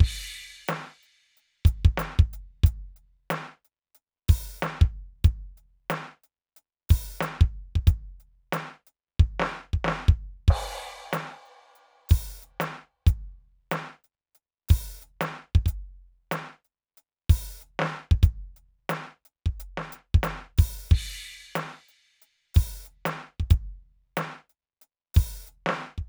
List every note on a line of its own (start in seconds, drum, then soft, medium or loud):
0.01 kick loud
0.01 crash loud
0.69 snare loud
0.69 closed hi-hat loud
1.03 closed hi-hat soft
1.38 closed hi-hat soft
1.66 kick loud
1.66 closed hi-hat loud
1.85 kick loud
1.98 snare loud
1.98 closed hi-hat loud
2.20 kick loud
2.34 closed hi-hat medium
2.64 kick loud
2.64 closed hi-hat loud
2.97 closed hi-hat soft
3.31 snare loud
3.31 closed hi-hat loud
3.65 closed hi-hat soft
3.95 closed hi-hat medium
4.29 kick loud
4.29 open hi-hat loud
4.59 snare loud
4.59 hi-hat pedal medium
4.63 closed hi-hat medium
4.82 kick loud
5.25 kick loud
5.25 closed hi-hat loud
5.58 closed hi-hat soft
5.90 snare loud
5.90 closed hi-hat loud
6.24 closed hi-hat soft
6.57 closed hi-hat medium
6.90 kick loud
6.90 open hi-hat loud
7.19 snare loud
7.19 hi-hat pedal medium
7.23 closed hi-hat loud
7.41 kick loud
7.76 kick medium
7.88 kick loud
7.88 closed hi-hat loud
8.21 closed hi-hat soft
8.53 snare loud
8.53 closed hi-hat loud
8.87 closed hi-hat medium
9.20 kick loud
9.40 snare loud
9.42 snare loud
9.74 kick medium
9.85 snare loud
9.89 snare loud
10.09 kick loud
10.49 kick loud
10.49 crash loud
11.13 snare loud
11.13 closed hi-hat loud
11.46 closed hi-hat soft
11.76 closed hi-hat soft
12.10 open hi-hat loud
12.10 kick loud
12.42 hi-hat pedal loud
12.61 snare loud
12.61 closed hi-hat loud
13.07 kick loud
13.07 closed hi-hat loud
13.72 snare loud
13.72 closed hi-hat loud
14.04 closed hi-hat soft
14.35 closed hi-hat soft
14.69 open hi-hat loud
14.69 kick loud
15.02 hi-hat pedal loud
15.21 snare loud
15.21 closed hi-hat loud
15.56 kick loud
15.66 kick medium
15.66 closed hi-hat loud
16.32 closed hi-hat loud
16.32 snare loud
16.65 closed hi-hat soft
16.98 closed hi-hat medium
17.30 kick loud
17.30 open hi-hat loud
17.61 hi-hat pedal loud
17.80 snare loud
17.82 snare loud
18.12 kick loud
18.24 kick loud
18.24 closed hi-hat loud
18.57 closed hi-hat soft
18.90 snare loud
18.90 closed hi-hat loud
19.26 closed hi-hat medium
19.46 kick medium
19.60 closed hi-hat loud
19.78 snare loud
19.93 closed hi-hat loud
20.15 kick loud
20.24 snare loud
20.24 closed hi-hat loud
20.58 kick loud
20.58 open hi-hat loud
20.90 kick loud
20.90 hi-hat pedal loud
20.90 crash loud
21.24 closed hi-hat soft
21.56 snare loud
21.56 closed hi-hat loud
21.89 closed hi-hat soft
22.22 closed hi-hat medium
22.55 open hi-hat loud
22.55 kick loud
22.85 hi-hat pedal loud
23.06 snare loud
23.06 closed hi-hat loud
23.40 kick medium
23.51 kick loud
23.51 closed hi-hat loud
24.17 snare loud
24.17 closed hi-hat loud
24.50 closed hi-hat soft
24.82 closed hi-hat medium
25.15 open hi-hat loud
25.15 kick loud
25.47 hi-hat pedal loud
25.67 snare loud
25.70 snare loud
25.98 kick medium